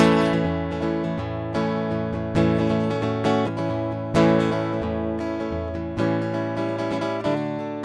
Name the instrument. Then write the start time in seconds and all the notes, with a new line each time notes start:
acoustic guitar
0.01 A2 E3 A3 C#4 E4
0.23 A2 C#4
0.35 A2 E3 A3
0.46 A2 E3
0.72 A2 E3 A3 C#4
0.82 A2 E3 A3 C#4 E4
1.05 A2 E3 A3
1.20 A2 E3 A3
1.56 A2 E3 A3 C#4 E4
1.79 E3
1.84 A3
1.92 A2 E3
2.14 A2 E3 A3
2.36 A2 E3 A3 C#4
2.60 A3 C#4 E4
2.69 A2 E3 A3 C#4 E4
2.92 A3 C#4 F#4
3.03 A2 A3 C#4 F#4
3.26 A3 C#4 F#4
3.47 E3 C#4
3.54 A2 E4
3.60 E3 C#4
3.70 A2 E3 A3
3.93 A2 E3
4.16 A2 E3 A3 C#4 E4
4.41 A3 C#4 E4
4.54 A3 C#4 E4
4.74 E3 A3
4.83 A2 E3
5.20 A3 C#4 E4
5.40 A3 C#4
5.53 A2
5.75 A2 E3 G3
5.97 A2 E3 G3 C#4 E4
6.23 C#4 E4
6.36 G3 C#4 E4
6.58 G3 C#4 E4
6.80 G3 C#4 E4
6.92 A2 E3 G3 C#4
7.03 G3 C#4 E4
7.26 D3 G3 D4 E4
7.36 A3 D4 F#4
7.60 D3 A3